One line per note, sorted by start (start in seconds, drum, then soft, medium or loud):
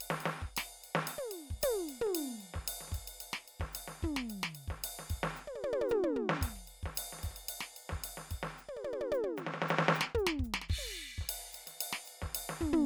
0.01 hi-hat pedal medium
0.01 ride bell medium
0.11 snare medium
0.21 ride medium
0.26 snare medium
0.42 kick soft
0.57 snare loud
0.57 hi-hat pedal medium
0.57 ride bell loud
0.84 ride soft
0.95 snare loud
1.07 hi-hat pedal medium
1.07 ride loud
1.18 high tom medium
1.31 ride medium
1.51 kick soft
1.61 hi-hat pedal medium
1.61 high tom loud
1.61 ride loud
1.89 ride medium
2.01 mid tom loud
2.06 mid tom soft
2.15 hi-hat pedal medium
2.15 ride bell loud
2.41 ride soft
2.54 kick soft
2.54 snare soft
2.68 hi-hat pedal medium
2.68 ride bell loud
2.81 snare soft
2.88 snare soft
2.92 kick soft
2.92 snare soft
2.92 ride medium
2.98 kick soft
3.08 ride medium
3.21 hi-hat pedal medium
3.21 ride bell medium
3.33 snare loud
3.48 ride soft
3.60 kick soft
3.60 snare soft
3.73 hi-hat pedal medium
3.73 ride loud
3.88 snare soft
4.03 kick soft
4.03 floor tom medium
4.09 kick soft
4.17 snare loud
4.29 hi-hat pedal medium
4.29 ride bell medium
4.43 snare loud
4.55 ride medium
4.68 kick soft
4.68 snare soft
4.84 hi-hat pedal medium
4.84 ride bell loud
4.99 snare soft
5.10 kick soft
5.10 ride medium
5.17 kick soft
5.24 snare medium
5.36 hi-hat pedal medium
5.47 high tom medium
5.55 high tom medium
5.64 high tom loud
5.73 high tom loud
5.81 high tom loud
5.89 hi-hat pedal medium
5.89 mid tom loud
6.04 high tom loud
6.16 mid tom medium
6.30 snare loud
6.42 kick soft
6.42 hi-hat pedal medium
6.42 ride bell medium
6.48 kick soft
6.55 kick soft
6.55 snare soft
6.68 ride soft
6.83 kick soft
6.83 snare soft
6.95 hi-hat pedal medium
6.95 ride bell loud
7.13 snare soft
7.19 snare soft
7.23 kick soft
7.23 snare soft
7.23 ride medium
7.30 kick soft
7.30 snare soft
7.36 ride medium
7.49 hi-hat pedal medium
7.49 ride bell loud
7.61 snare medium
7.77 ride medium
7.90 kick soft
7.90 snare soft
8.04 hi-hat pedal medium
8.04 ride loud
8.18 snare soft
8.31 kick soft
8.31 ride medium
8.43 snare medium
8.58 hi-hat pedal medium
8.69 high tom medium
8.77 high tom medium
8.84 high tom medium
8.93 high tom medium
9.01 high tom medium
9.12 hi-hat pedal medium
9.12 high tom loud
9.24 high tom medium
9.37 snare soft
9.37 hi-hat pedal medium
9.47 snare medium
9.54 snare medium
9.62 snare medium
9.68 snare loud
9.68 hi-hat pedal medium
9.79 snare loud
9.89 snare loud
9.95 hi-hat pedal medium
10.01 snare loud
10.15 kick soft
10.15 hi-hat pedal medium
10.15 mid tom loud
10.21 kick soft
10.27 snare loud
10.40 kick soft
10.44 kick soft
10.44 hi-hat pedal medium
10.54 snare loud
10.62 snare soft
10.69 kick medium
10.69 crash loud
10.78 kick soft
10.78 high tom soft
10.85 kick soft
10.96 hi-hat pedal soft
11.18 kick soft
11.18 snare soft
11.29 ride bell loud
11.52 hi-hat pedal medium
11.52 ride medium
11.67 snare soft
11.67 ride medium
11.81 ride bell loud
11.93 snare loud
12.05 hi-hat pedal medium
12.05 ride soft
12.22 kick soft
12.22 snare soft
12.35 hi-hat pedal medium
12.35 ride bell loud
12.50 snare medium
12.60 kick soft
12.60 floor tom medium
12.68 kick soft
12.73 floor tom loud